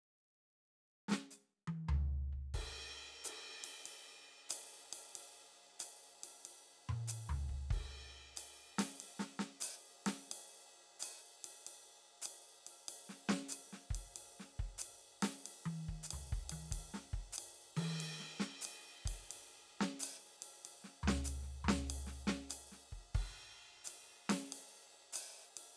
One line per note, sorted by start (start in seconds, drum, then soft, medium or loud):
1.08 snare soft
1.11 snare medium
1.30 hi-hat pedal medium
1.67 high tom medium
1.88 floor tom loud
2.32 kick soft
2.54 kick soft
2.54 crash soft
2.54 ride medium
3.24 hi-hat pedal loud
3.24 ride medium
3.64 ride medium
3.85 ride medium
4.49 hi-hat pedal loud
4.49 ride loud
4.92 ride loud
5.15 ride medium
5.79 hi-hat pedal loud
5.79 ride medium
6.23 ride medium
6.45 ride medium
6.89 mid tom medium
7.07 hi-hat pedal loud
7.07 ride medium
7.29 floor tom medium
7.49 kick soft
7.70 kick medium
7.70 ride medium
8.36 hi-hat pedal medium
8.36 ride medium
8.78 snare medium
8.78 ride loud
9.00 ride medium
9.19 snare medium
9.39 snare medium
9.60 hi-hat pedal loud
9.60 ride loud
10.06 snare medium
10.06 ride medium
10.31 ride loud
10.99 hi-hat pedal medium
10.99 ride loud
11.44 ride medium
11.66 ride medium
12.22 hi-hat pedal loud
12.22 ride medium
12.66 ride medium
12.88 ride loud
13.09 snare soft
13.29 snare medium
13.48 hi-hat pedal loud
13.48 ride medium
13.72 snare soft
13.90 kick soft
13.94 ride medium
14.16 ride medium
14.39 snare soft
14.59 kick soft
14.78 hi-hat pedal loud
14.78 ride medium
15.22 snare medium
15.22 ride loud
15.45 ride medium
15.65 high tom medium
15.88 kick soft
16.03 hi-hat pedal medium
16.10 floor tom medium
16.10 ride loud
16.32 kick soft
16.49 high tom soft
16.49 ride medium
16.71 kick soft
16.71 ride medium
16.94 snare soft
17.13 kick soft
17.32 hi-hat pedal loud
17.38 ride loud
17.76 high tom medium
17.76 ride loud
18.00 ride medium
18.19 snare soft
18.40 snare medium
18.61 hi-hat pedal loud
18.61 ride medium
19.05 kick soft
19.05 ride medium
19.31 ride medium
19.80 snare medium
19.99 hi-hat pedal loud
19.99 ride loud
20.42 ride medium
20.65 ride medium
20.84 snare soft
21.03 floor tom medium
21.07 snare medium
21.24 hi-hat pedal loud
21.24 ride medium
21.42 snare soft
21.64 floor tom medium
21.68 snare medium
21.86 hi-hat pedal soft
21.86 ride loud
22.06 snare soft
22.27 snare medium
22.49 hi-hat pedal medium
22.49 ride loud
22.72 snare soft
22.92 kick soft
23.14 kick medium
23.14 crash medium
23.84 hi-hat pedal medium
23.84 ride medium
24.29 snare medium
24.29 ride loud
24.52 ride medium
25.12 hi-hat pedal loud
25.12 ride medium
25.57 ride medium